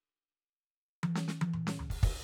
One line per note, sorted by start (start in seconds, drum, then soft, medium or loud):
1.03 high tom loud
1.16 snare medium
1.28 snare medium
1.41 high tom loud
1.54 mid tom medium
1.67 snare medium
1.79 floor tom medium
1.90 kick soft
1.90 crash medium
2.03 kick loud
2.03 crash medium